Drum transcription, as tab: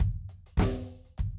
Hi-hat |x-xx--xxx-------|
Snare  |----o-----------|
Kick   |o---o---o-------|